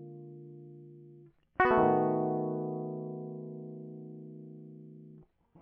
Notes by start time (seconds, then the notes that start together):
1.60 F#4
1.65 B3
1.71 A3
1.78 D#3
1.84 A2